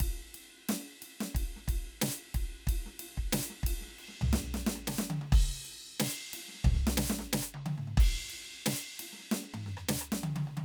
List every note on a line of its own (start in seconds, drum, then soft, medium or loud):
0.02 kick medium
0.02 ride loud
0.34 ride medium
0.69 snare loud
0.69 hi-hat pedal medium
0.69 ride loud
1.02 hi-hat pedal soft
1.02 ride medium
1.20 snare loud
1.34 kick medium
1.34 ride loud
1.56 snare soft
1.68 kick medium
1.68 hi-hat pedal soft
1.68 ride loud
2.01 snare loud
2.01 ride loud
2.34 kick medium
2.34 ride medium
2.67 kick medium
2.67 ride loud
2.86 snare soft
2.99 ride loud
3.17 kick medium
3.32 snare loud
3.32 ride loud
3.50 snare soft
3.63 kick medium
3.63 ride loud
3.81 snare soft
3.87 snare soft
3.98 ride medium
4.08 snare soft
4.14 snare soft
4.21 floor tom loud
4.33 snare loud
4.54 snare medium
4.66 snare loud
4.75 cross-stick medium
4.87 snare loud
4.98 snare loud
5.10 high tom loud
5.21 high tom medium
5.32 kick loud
5.32 crash loud
5.65 ride medium
6.00 snare loud
6.00 ride loud
6.33 ride loud
6.48 snare soft
6.54 snare soft
6.60 snare soft
6.64 kick medium
6.64 floor tom loud
6.74 snare medium
6.87 snare loud
6.97 snare loud
7.10 snare loud
7.19 snare medium
7.33 snare loud
7.42 cross-stick medium
7.54 high tom medium
7.66 high tom loud
7.78 mid tom medium
7.87 mid tom medium
7.97 kick loud
7.97 ride loud
8.30 ride medium
8.66 snare loud
8.66 ride medium
8.99 ride loud
9.12 snare soft
9.19 snare soft
9.31 snare loud
9.43 snare soft
9.54 mid tom loud
9.66 snare medium
9.77 cross-stick medium
9.88 snare loud
10.01 cross-stick medium
10.12 snare loud
10.23 high tom loud
10.36 high tom loud
10.47 high tom medium
10.57 high tom loud